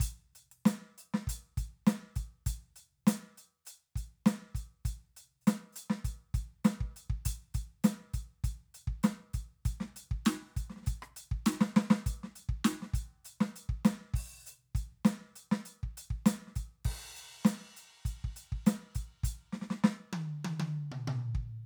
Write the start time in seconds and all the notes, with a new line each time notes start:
0.06 closed hi-hat, kick
0.35 closed hi-hat
0.52 closed hi-hat
0.66 closed hi-hat, snare
0.98 open hi-hat, hi-hat pedal
1.14 snare
1.27 closed hi-hat, kick
1.58 closed hi-hat, kick
1.87 open hi-hat, snare, hi-hat pedal
2.16 closed hi-hat, kick
2.46 closed hi-hat, kick
2.76 closed hi-hat
3.07 closed hi-hat, snare
3.38 closed hi-hat
3.66 closed hi-hat, hi-hat pedal
3.96 closed hi-hat, kick
4.26 closed hi-hat, snare, hi-hat pedal
4.55 closed hi-hat, kick
4.85 closed hi-hat, kick
5.17 closed hi-hat
5.41 hi-hat pedal
5.47 closed hi-hat, snare
5.73 closed hi-hat, hi-hat pedal
5.90 snare
6.05 closed hi-hat, kick
6.34 closed hi-hat, kick
6.65 closed hi-hat, snare
6.81 kick
6.96 closed hi-hat
7.10 kick
7.25 closed hi-hat, kick
7.54 closed hi-hat, kick
7.74 kick
7.84 closed hi-hat, snare
8.14 closed hi-hat, kick
8.44 closed hi-hat, kick
8.75 closed hi-hat
8.88 kick
9.03 closed hi-hat, snare
9.34 closed hi-hat, kick
9.65 closed hi-hat, kick
9.80 snare
9.96 closed hi-hat
10.11 kick
10.26 closed hi-hat, snare
10.57 closed hi-hat, kick
10.70 snare
10.76 snare
10.83 snare
10.87 closed hi-hat, kick
11.03 cross-stick
11.17 closed hi-hat
11.32 kick
11.46 closed hi-hat, snare
11.61 snare
11.77 snare
11.90 snare
12.06 closed hi-hat, kick
12.24 snare
12.36 closed hi-hat
12.49 kick
12.65 closed hi-hat, snare
12.82 snare
12.94 open hi-hat, kick
13.25 closed hi-hat, hi-hat pedal
13.41 snare
13.56 closed hi-hat
13.69 kick
13.85 closed hi-hat, snare
14.14 open hi-hat, kick
14.46 open hi-hat, hi-hat pedal
14.75 closed hi-hat, kick
14.93 kick
15.05 closed hi-hat, snare
15.36 closed hi-hat
15.52 snare
15.66 closed hi-hat
15.83 kick
15.97 closed hi-hat
16.11 kick
16.26 closed hi-hat, snare
16.48 snare
16.56 closed hi-hat, kick
16.85 kick, crash
17.16 closed hi-hat
17.45 closed hi-hat, snare
17.77 closed hi-hat
18.05 closed hi-hat, kick
18.24 kick
18.36 closed hi-hat
18.52 kick
18.67 closed hi-hat, snare
18.95 closed hi-hat, kick
19.24 closed hi-hat, kick
19.53 snare
19.62 snare
19.71 snare
19.84 snare
20.13 high tom
20.45 high tom
20.60 high tom
20.92 mid tom
21.08 mid tom
21.35 kick